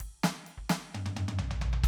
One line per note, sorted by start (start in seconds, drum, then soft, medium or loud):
0.00 kick soft
0.00 ride medium
0.23 snare loud
0.23 ride medium
0.46 ride soft
0.57 kick soft
0.69 snare loud
0.69 ride medium
0.94 high tom loud
1.06 high tom loud
1.16 high tom loud
1.28 high tom loud
1.39 floor tom loud
1.51 floor tom loud
1.61 floor tom loud
1.73 floor tom loud
1.83 kick loud
1.83 ride medium